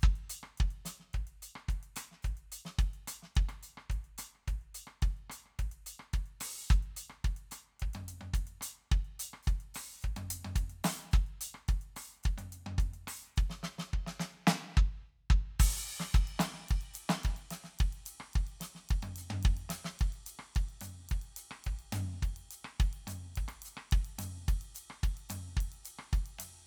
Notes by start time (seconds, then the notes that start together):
0.01 kick, closed hi-hat, hi-hat pedal
0.07 snare
0.16 closed hi-hat
0.30 closed hi-hat
0.44 cross-stick
0.58 kick, closed hi-hat
0.71 closed hi-hat
0.86 closed hi-hat, snare
1.00 snare
1.14 kick, closed hi-hat
1.28 closed hi-hat
1.43 closed hi-hat
1.56 cross-stick
1.69 kick, closed hi-hat
1.84 closed hi-hat
1.97 closed hi-hat, cross-stick
2.12 snare
2.23 kick, closed hi-hat, hi-hat pedal
2.33 snare
2.38 closed hi-hat
2.53 closed hi-hat
2.66 snare
2.79 kick, closed hi-hat
2.94 closed hi-hat
3.08 closed hi-hat, kick, cross-stick
3.23 snare
3.36 kick, closed hi-hat
3.50 cross-stick, closed hi-hat
3.64 closed hi-hat
3.78 cross-stick
3.91 kick, closed hi-hat
4.05 closed hi-hat
4.19 closed hi-hat, cross-stick
4.36 cross-stick
4.48 kick, closed hi-hat
4.62 closed hi-hat
4.75 closed hi-hat
4.88 cross-stick
5.03 kick, closed hi-hat
5.18 closed hi-hat
5.31 closed hi-hat, cross-stick
5.47 cross-stick
5.60 kick, closed hi-hat
5.72 closed hi-hat
5.87 closed hi-hat
6.00 cross-stick
6.14 kick, closed hi-hat
6.27 closed hi-hat
6.41 open hi-hat, cross-stick
6.69 kick, closed hi-hat, hi-hat pedal
6.83 closed hi-hat
6.97 closed hi-hat
7.11 cross-stick
7.25 kick, closed hi-hat
7.37 closed hi-hat
7.52 closed hi-hat, cross-stick
7.80 kick, closed hi-hat
7.94 closed hi-hat, high tom
8.09 kick, closed hi-hat
8.22 high tom
8.34 kick, closed hi-hat
8.48 closed hi-hat
8.62 closed hi-hat, cross-stick
8.92 kick, closed hi-hat
9.05 closed hi-hat
9.20 closed hi-hat
9.34 cross-stick
9.44 hi-hat pedal
9.48 kick, closed hi-hat
9.61 closed hi-hat
9.75 open hi-hat, cross-stick
10.01 kick, closed hi-hat, hi-hat pedal
10.17 closed hi-hat, high tom
10.29 kick, closed hi-hat
10.45 high tom
10.56 kick, closed hi-hat
10.70 closed hi-hat
10.85 open hi-hat, snare
11.12 kick, closed hi-hat, hi-hat pedal
11.27 closed hi-hat
11.42 closed hi-hat
11.55 cross-stick
11.69 kick, closed hi-hat
11.82 closed hi-hat
11.97 open hi-hat, cross-stick
12.24 kick, closed hi-hat, hi-hat pedal
12.39 closed hi-hat, high tom
12.53 closed hi-hat
12.67 high tom
12.79 kick, closed hi-hat
12.94 closed hi-hat
13.08 open hi-hat, cross-stick
13.23 cross-stick
13.37 kick, closed hi-hat, hi-hat pedal
13.51 snare
13.64 snare
13.79 snare
13.94 kick
14.07 snare
14.20 snare
14.48 snare
14.78 kick
14.99 kick
15.31 kick
15.60 open hi-hat, kick, ride
15.91 ride
16.01 snare
16.15 kick, hi-hat pedal, ride
16.28 ride
16.40 snare, ride
16.54 snare
16.69 kick, ride
16.82 ride
16.94 hi-hat pedal, ride
17.10 snare
17.24 kick, ride
17.37 ride
17.52 snare, hi-hat pedal, ride
17.65 snare
17.80 kick, ride
17.91 snare, ride
18.06 hi-hat pedal, ride
18.21 cross-stick
18.34 kick, ride
18.48 ride
18.61 snare, hi-hat pedal, ride
18.76 snare
18.90 kick, ride
19.03 high tom, ride
19.17 hi-hat pedal, ride
19.31 high tom
19.44 kick, ride
19.58 ride
19.70 snare, hi-hat pedal, ride
19.85 snare
20.00 kick, ride
20.13 ride
20.27 hi-hat pedal, ride
20.40 cross-stick
20.56 kick, ride
20.70 ride
20.82 hi-hat pedal, high tom, ride
21.10 kick, ride
21.22 ride
21.37 hi-hat pedal, ride
21.52 cross-stick
21.65 kick, ride
21.80 ride
21.93 hi-hat pedal, high tom, ride
22.23 kick, ride
22.37 ride
22.52 hi-hat pedal, ride
22.65 cross-stick
22.81 kick, ride
22.94 ride
23.08 hi-hat pedal, high tom, ride
23.37 kick, ride
23.49 cross-stick, ride
23.63 hi-hat pedal, ride
23.78 cross-stick
23.92 kick, ride
24.06 ride
24.19 hi-hat pedal, high tom, ride
24.49 kick, ride
24.62 ride
24.76 hi-hat pedal, ride
24.91 cross-stick
25.04 kick, ride
25.18 ride
25.30 hi-hat pedal, high tom, ride
25.58 kick, ride
25.73 ride
25.85 hi-hat pedal, ride
26.00 cross-stick
26.14 kick, ride
26.27 ride
26.39 hi-hat pedal, high tom, ride